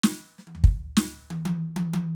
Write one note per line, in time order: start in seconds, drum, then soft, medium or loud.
0.03 snare loud
0.38 snare soft
0.47 high tom medium
0.55 floor tom medium
0.64 kick loud
0.97 snare loud
1.30 high tom loud
1.45 high tom loud
1.76 high tom loud
1.94 high tom loud